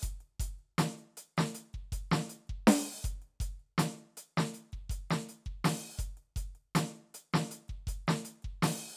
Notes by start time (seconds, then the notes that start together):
0.01 closed hi-hat, kick, hi-hat pedal
0.21 closed hi-hat
0.40 closed hi-hat, kick
0.59 closed hi-hat
0.78 closed hi-hat, snare
0.98 closed hi-hat
1.17 closed hi-hat
1.37 closed hi-hat, snare
1.55 closed hi-hat
1.73 kick, closed hi-hat
1.92 closed hi-hat, kick
2.11 snare, closed hi-hat
2.17 snare
2.30 closed hi-hat
2.47 kick, closed hi-hat
2.67 open hi-hat, snare
3.03 closed hi-hat, kick, hi-hat pedal
3.22 closed hi-hat
3.40 closed hi-hat, kick
3.60 closed hi-hat
3.78 closed hi-hat, snare
3.98 closed hi-hat
4.17 closed hi-hat
4.37 snare, closed hi-hat
4.54 closed hi-hat
4.73 kick, closed hi-hat
4.90 closed hi-hat, kick
5.10 snare, closed hi-hat
5.29 closed hi-hat
5.46 kick, closed hi-hat
5.65 open hi-hat, snare
5.98 closed hi-hat, kick, hi-hat pedal
6.17 closed hi-hat
6.36 closed hi-hat, kick
6.55 closed hi-hat
6.75 closed hi-hat, snare
6.96 closed hi-hat
7.14 closed hi-hat
7.33 snare, closed hi-hat
7.51 closed hi-hat
7.68 kick, closed hi-hat
7.87 closed hi-hat, kick
8.08 snare, closed hi-hat
8.25 closed hi-hat
8.43 kick, closed hi-hat
8.63 open hi-hat, snare